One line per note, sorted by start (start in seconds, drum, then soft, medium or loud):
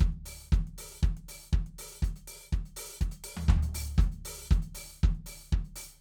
0.01 kick loud
0.01 closed hi-hat soft
0.13 closed hi-hat soft
0.26 open hi-hat loud
0.42 hi-hat pedal soft
0.42 open hi-hat soft
0.53 kick loud
0.53 closed hi-hat soft
0.67 closed hi-hat soft
0.78 open hi-hat loud
0.93 open hi-hat soft
0.98 hi-hat pedal soft
1.03 kick loud
1.03 closed hi-hat soft
1.17 closed hi-hat soft
1.29 open hi-hat loud
1.42 open hi-hat soft
1.47 hi-hat pedal soft
1.53 kick loud
1.53 closed hi-hat soft
1.67 closed hi-hat soft
1.79 open hi-hat loud
1.93 hi-hat pedal soft
1.93 open hi-hat soft
2.03 closed hi-hat medium
2.03 kick medium
2.16 closed hi-hat soft
2.28 open hi-hat loud
2.41 open hi-hat soft
2.45 hi-hat pedal soft
2.53 kick medium
2.53 closed hi-hat soft
2.66 closed hi-hat soft
2.77 open hi-hat loud
2.91 open hi-hat soft
2.96 hi-hat pedal soft
3.01 kick medium
3.01 closed hi-hat medium
3.12 closed hi-hat medium
3.24 open hi-hat loud
3.37 floor tom loud
3.44 hi-hat pedal soft
3.49 kick loud
3.49 floor tom loud
3.63 closed hi-hat soft
3.75 open hi-hat loud
3.88 open hi-hat soft
3.95 kick loud
3.95 hi-hat pedal soft
4.00 closed hi-hat soft
4.12 closed hi-hat soft
4.21 kick soft
4.25 open hi-hat loud
4.39 open hi-hat soft
4.46 hi-hat pedal soft
4.51 closed hi-hat soft
4.51 kick loud
4.62 closed hi-hat soft
4.75 open hi-hat loud
4.89 open hi-hat soft
4.99 hi-hat pedal soft
5.03 closed hi-hat soft
5.03 kick loud
5.15 closed hi-hat soft
5.26 open hi-hat loud
5.42 open hi-hat soft
5.49 kick loud
5.49 hi-hat pedal soft
5.65 closed hi-hat soft
5.76 open hi-hat loud
5.93 open hi-hat soft
5.97 hi-hat pedal soft